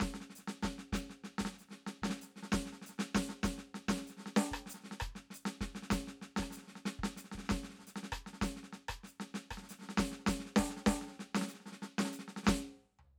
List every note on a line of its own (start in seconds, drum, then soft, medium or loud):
0.01 kick soft
0.01 snare medium
0.10 kick soft
0.15 snare soft
0.21 snare soft
0.31 snare soft
0.36 snare soft
0.36 hi-hat pedal medium
0.48 snare medium
0.64 kick soft
0.64 snare medium
0.79 snare soft
0.93 kick soft
0.93 snare medium
0.93 hi-hat pedal medium
1.11 snare soft
1.25 snare soft
1.39 kick soft
1.39 snare medium
1.46 snare medium
1.54 snare soft
1.60 snare soft
1.60 hi-hat pedal soft
1.70 snare soft
1.88 snare medium
2.03 kick soft
2.03 snare medium
2.11 snare medium
2.17 snare soft
2.22 snare soft
2.22 hi-hat pedal medium
2.30 snare soft
2.35 snare soft
2.37 snare soft
2.43 snare soft
2.53 kick soft
2.53 snare loud
2.60 kick soft
2.67 snare soft
2.73 snare soft
2.82 snare soft
2.87 snare soft
2.87 hi-hat pedal medium
2.99 snare soft
2.99 snare medium
3.15 kick soft
3.15 snare loud
3.30 snare soft
3.44 kick soft
3.44 snare medium
3.44 hi-hat pedal soft
3.59 snare soft
3.75 snare soft
3.89 kick soft
3.89 snare medium
3.98 snare soft
4.02 snare soft
4.08 snare soft
4.08 hi-hat pedal soft
4.18 snare soft
4.19 snare soft
4.27 snare soft
4.37 snare loud
4.52 kick soft
4.52 cross-stick medium
4.67 snare soft
4.67 hi-hat pedal medium
4.75 snare soft
4.81 snare soft
4.85 snare soft
4.92 snare soft
5.01 kick soft
5.01 cross-stick medium
5.16 snare soft
5.31 snare soft
5.31 hi-hat pedal medium
5.46 snare medium
5.62 kick soft
5.62 snare medium
5.76 snare soft
5.83 snare soft
5.91 kick soft
5.91 snare medium
5.91 hi-hat pedal medium
6.01 kick soft
6.08 snare soft
6.22 snare soft
6.37 kick soft
6.37 snare medium
6.43 cross-stick medium
6.51 snare soft
6.51 hi-hat pedal medium
6.58 snare soft
6.63 snare soft
6.68 snare soft
6.76 snare soft
6.86 snare medium
7.00 kick soft
7.04 snare medium
7.17 snare soft
7.17 hi-hat pedal medium
7.25 snare soft
7.32 kick soft
7.32 snare soft
7.39 snare soft
7.44 snare soft
7.50 kick soft
7.50 snare medium
7.64 snare soft
7.70 snare soft
7.75 snare soft
7.80 snare soft
7.88 snare soft
7.88 hi-hat pedal soft
7.97 snare soft
8.04 snare soft
8.13 kick soft
8.13 cross-stick medium
8.27 snare soft
8.34 snare soft
8.42 kick soft
8.42 snare medium
8.42 hi-hat pedal soft
8.57 snare soft
8.64 snare soft
8.74 snare soft
8.89 kick soft
8.89 cross-stick medium
9.04 snare soft
9.04 hi-hat pedal soft
9.21 snare soft
9.35 snare medium
9.52 kick soft
9.52 cross-stick medium
9.58 snare soft
9.63 snare soft
9.70 snare soft
9.70 hi-hat pedal medium
9.80 snare soft
9.82 snare soft
9.98 kick soft
9.98 snare loud
10.12 snare soft
10.20 snare soft
10.27 kick soft
10.27 snare loud
10.27 hi-hat pedal medium
10.40 snare soft
10.46 snare soft
10.52 snare soft
10.57 kick soft
10.57 snare loud
10.70 snare soft
10.77 snare soft
10.82 snare soft
10.87 kick soft
10.87 snare loud
10.87 hi-hat pedal soft
11.02 snare soft
11.08 snare soft
11.13 snare soft
11.20 snare soft
11.36 snare medium
11.42 snare medium
11.48 snare soft
11.48 hi-hat pedal soft
11.55 snare soft
11.61 snare soft
11.67 snare soft
11.73 snare soft
11.83 snare soft
11.99 snare medium
12.06 snare medium
12.11 snare soft
12.11 hi-hat pedal medium
12.20 snare soft
12.29 snare soft
12.37 snare soft
12.44 snare soft
12.48 kick soft
12.48 snare loud
12.59 kick soft
13.00 floor tom soft